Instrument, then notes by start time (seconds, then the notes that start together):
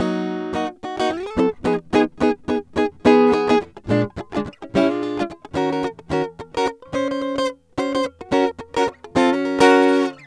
acoustic guitar
0.00 F#3 A#3 D#4 F#4
0.55 A#3 D#4 F#4
0.84 A#3 D#4 F#4
1.02 A#3 D#4 F#4
1.39 F#3 C4 A4
1.66 F3 B3 D#4 G#4
1.94 F3 B3 D#4 G#4
2.20 F3 B3 D#4 G#4
2.49 B3 D#4 G#4
2.77 B3 D#4 G#4
3.06 F3 B3 D#4 G#4
3.31 B3 D#4 G#4
3.50 B3 D#4 G#4
3.90 A#2 G#3 D4 F4
4.34 D4 F4
4.38 G#3
4.65 E4
4.71 A2
4.76 G3 C#4 E4
4.88 A#2 G#3 D4 F4
5.04 F4
5.21 G#3 D4 F4
5.55 D#3 C#4 F#4 A#4
5.72 F#4 A#4
5.85 A#4
6.11 D#3 C#4 F#4 A#4
6.41 A#4
6.56 C#4 F#4 A#4
6.84 C5
6.94 C#4 C5
7.09 C5
7.22 C5
7.37 C5
7.79 C#4 C5
7.94 C5
8.21 A#4
8.33 C#4 F#4 A#4
8.61 A#4
8.76 C#4 F#4 A#4
9.05 A4
9.17 D3 C4 F4 A4
9.31 C#4 F#4
9.46 D#3 A#4
9.60 C#4 F#4 A#4